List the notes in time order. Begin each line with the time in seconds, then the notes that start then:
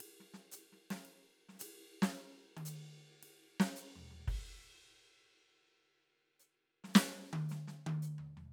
0.01 ride
0.21 snare
0.34 snare
0.52 hi-hat pedal, ride
0.73 snare
0.91 snare, ride
0.96 snare
1.06 ride
1.49 snare
1.52 snare
1.55 snare
1.60 hi-hat pedal, ride
2.03 snare
2.09 snare
2.16 ride
2.57 high tom, ride
2.66 hi-hat pedal, ride
3.23 ride
3.60 snare
3.77 hi-hat pedal, ride
3.96 floor tom
4.11 floor tom
4.28 kick, crash
6.40 hi-hat pedal
6.84 snare
6.89 snare
6.92 snare, hi-hat pedal
6.96 snare
7.33 high tom
7.49 snare, hi-hat pedal
7.68 snare
7.87 high tom
8.03 hi-hat pedal
8.19 floor tom
8.38 floor tom